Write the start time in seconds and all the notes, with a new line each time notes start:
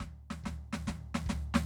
0.03 kick, snare, floor tom
0.30 snare, floor tom
0.44 kick, snare, floor tom
0.73 snare, floor tom
0.87 kick, snare, floor tom
1.14 snare, floor tom
1.26 kick, snare, floor tom
1.54 snare, floor tom